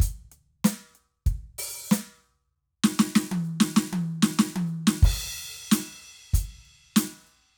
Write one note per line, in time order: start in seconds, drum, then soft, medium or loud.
0.01 closed hi-hat loud
0.01 kick medium
0.33 closed hi-hat soft
0.66 closed hi-hat loud
0.66 snare loud
0.96 closed hi-hat soft
1.27 kick medium
1.27 closed hi-hat medium
1.59 open hi-hat loud
1.93 closed hi-hat loud
1.93 snare loud
1.93 hi-hat pedal medium
2.85 snare loud
3.00 snare loud
3.15 snare loud
3.15 hi-hat pedal soft
3.33 high tom loud
3.45 hi-hat pedal soft
3.61 snare loud
3.76 snare loud
3.76 hi-hat pedal soft
3.94 high tom loud
4.24 snare loud
4.39 snare loud
4.39 hi-hat pedal soft
4.57 high tom loud
4.68 hi-hat pedal soft
4.88 snare loud
5.04 kick loud
5.04 crash loud
5.73 closed hi-hat loud
5.73 snare loud
6.05 closed hi-hat soft
6.35 closed hi-hat loud
6.35 kick medium
6.66 closed hi-hat soft
6.97 closed hi-hat loud
6.97 snare loud
7.28 closed hi-hat soft